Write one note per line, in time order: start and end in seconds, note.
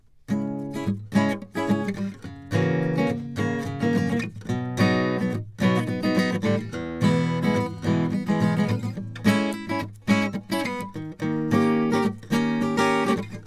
0.29 0.85 C#3
0.29 0.94 G#3
0.29 0.78 C#4
0.29 0.72 E4
0.75 0.94 C#4
0.75 0.95 E4
0.75 0.99 G#4
1.13 1.36 C#3
1.13 1.37 G#3
1.17 1.38 C#4
1.17 1.42 E4
1.56 1.70 C#4
1.56 1.72 E4
1.56 1.96 G#4
1.69 1.90 C#3
1.69 1.93 G#3
1.69 1.83 C#4
1.69 1.85 E4
1.83 1.92 C#4
2.25 2.50 F2
2.25 2.52 C#3
2.52 3.07 F#2
2.52 3.09 C#3
2.52 3.01 E3
2.52 3.00 A#3
2.56 2.96 C#4
2.68 2.95 F#4
2.96 3.21 C#4
2.96 3.17 F#4
3.00 3.08 E3
3.00 3.41 A#3
3.08 3.15 F2
3.08 3.38 C#3
3.37 3.45 F#2
3.37 3.60 C#3
3.37 3.61 E3
3.41 3.66 A#3
3.61 3.92 F#2
3.61 3.95 C#3
3.81 3.98 A#3
3.81 4.10 C#4
3.85 3.96 E3
3.94 4.18 F#2
3.94 4.21 C#3
3.94 4.14 E3
3.98 4.13 A#3
4.11 4.24 E3
4.11 4.29 A#3
4.11 4.22 C#4
4.21 4.30 E2
4.21 4.40 D#3
4.46 4.57 F2
4.46 4.77 B2
4.78 5.33 B2
4.78 5.21 F#3
4.78 5.19 B3
4.78 5.19 D#4
4.82 5.18 G#4
5.22 5.42 F#3
5.22 5.36 B3
5.37 5.45 D#4
5.59 5.66 F#2
5.59 5.83 B2
5.59 5.84 F#3
5.64 5.85 B3
5.64 6.02 D#4
5.88 6.07 F#3
5.88 6.02 B3
6.01 6.19 D#4
6.01 6.42 G#4
6.06 6.17 F#3
6.06 6.17 B3
6.18 6.35 F#3
6.18 6.31 B3
6.18 6.32 D#4
6.32 6.40 B3
6.36 6.45 F#3
6.44 6.69 A2
6.44 6.60 D3
6.44 6.58 G3
6.74 7.83 E2
7.02 7.60 B2
7.02 7.62 E3
7.02 7.16 G#3
7.02 7.42 B3
7.02 7.41 E4
7.43 7.66 G#3
7.43 7.61 B3
7.43 7.76 E4
7.61 7.69 B3
7.83 8.27 E2
7.83 8.10 B2
7.88 8.09 E3
7.88 8.08 G#3
8.15 8.26 B3
8.28 8.42 E3
8.28 8.43 G#3
8.28 8.43 B3
8.42 8.79 B2
8.42 8.61 E3
8.42 8.56 G#3
8.42 8.55 B3
8.58 8.69 E3
8.58 8.69 G#3
8.58 8.72 B3
8.70 8.83 D3
8.70 8.80 B3
8.84 8.92 B3
9.27 9.54 G#3
9.27 9.55 C#4
9.27 9.52 E4
9.27 9.46 E4
9.53 9.68 E4
9.70 9.88 C#4
9.70 9.89 E4
10.09 10.31 G#3
10.09 10.32 C#4
10.09 10.31 E4
10.52 10.68 C#4
10.52 10.66 E4
10.67 10.85 B3
10.96 11.15 D#3
11.20 12.09 D#3
11.25 11.52 A#3
11.52 12.15 A#3
11.52 11.96 C#4
11.52 11.92 G4
11.93 12.03 C#4
11.93 12.15 G4
11.93 12.13 A#4
12.32 13.21 D#3
12.32 13.18 A#3
12.32 12.61 C#4
12.32 12.62 G4
12.37 12.63 A#4
12.62 12.81 C#4
12.62 12.79 G4
12.62 12.77 A#4
12.78 13.09 C#4
12.78 13.07 G4
12.78 13.06 A#4
13.07 13.17 C#4
13.07 13.18 G4